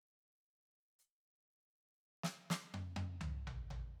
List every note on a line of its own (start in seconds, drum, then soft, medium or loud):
0.99 hi-hat pedal soft
2.24 snare medium
2.50 snare medium
2.74 high tom medium
2.96 high tom medium
3.21 mid tom medium
3.47 floor tom medium
3.70 floor tom medium